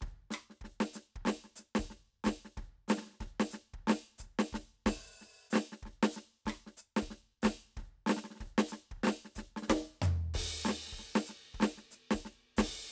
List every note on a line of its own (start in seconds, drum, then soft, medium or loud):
0.01 kick soft
0.01 snare soft
0.31 cross-stick medium
0.31 snare medium
0.31 hi-hat pedal medium
0.50 snare soft
0.61 kick soft
0.61 snare soft
0.80 snare medium
0.93 snare soft
0.93 hi-hat pedal medium
1.16 kick soft
1.25 snare medium
1.27 snare loud
1.44 snare soft
1.56 snare soft
1.56 hi-hat pedal medium
1.75 snare medium
1.79 kick soft
1.90 snare soft
2.24 kick soft
2.24 snare medium
2.24 hi-hat pedal medium
2.26 snare medium
2.45 snare soft
2.57 kick soft
2.57 snare soft
2.88 snare soft
2.88 hi-hat pedal medium
2.90 snare loud
2.97 snare soft
3.01 snare soft
3.06 snare soft
3.10 snare soft
3.13 snare soft
3.20 kick soft
3.20 snare soft
3.40 snare loud
3.50 snare soft
3.50 hi-hat pedal medium
3.74 kick soft
3.87 snare medium
3.90 snare loud
4.18 kick soft
4.18 hi-hat pedal medium
4.23 snare soft
4.39 snare loud
4.53 kick soft
4.53 snare medium
4.86 open hi-hat medium
4.86 kick soft
4.86 snare loud
5.21 snare soft
5.50 snare medium
5.50 hi-hat pedal medium
5.56 snare loud
5.72 snare soft
5.83 kick soft
5.83 snare soft
6.03 snare loud
6.12 hi-hat pedal medium
6.16 snare soft
6.46 kick soft
6.46 snare medium
6.50 cross-stick medium
6.66 snare soft
6.77 snare soft
6.77 hi-hat pedal medium
6.97 snare medium
7.02 kick soft
7.10 snare soft
7.42 kick soft
7.42 snare medium
7.42 hi-hat pedal medium
7.45 snare loud
7.77 kick soft
7.77 snare soft
8.06 snare medium
8.06 hi-hat pedal medium
8.09 snare loud
8.17 snare soft
8.24 snare soft
8.30 snare soft
8.35 snare soft
8.40 kick soft
8.40 snare soft
8.58 snare loud
8.68 hi-hat pedal medium
8.72 snare soft
8.91 kick soft
9.03 snare medium
9.07 snare loud
9.25 snare soft
9.35 kick soft
9.35 snare soft
9.35 hi-hat pedal medium
9.56 snare soft
9.62 snare soft
9.68 kick soft
9.68 snare soft
9.70 snare loud
10.02 floor tom loud
10.02 hi-hat pedal medium
10.34 kick medium
10.34 ride loud
10.65 snare medium
10.65 hi-hat pedal medium
10.68 snare medium
10.87 snare soft
10.92 kick soft
10.99 snare soft
11.15 snare loud
11.26 snare soft
11.26 hi-hat pedal medium
11.54 kick soft
11.60 snare medium
11.62 snare loud
11.77 snare soft
11.91 snare soft
11.91 hi-hat pedal medium
12.11 kick soft
12.11 snare loud
12.25 snare soft
12.57 kick soft
12.57 snare loud
12.57 hi-hat pedal loud
12.57 ride loud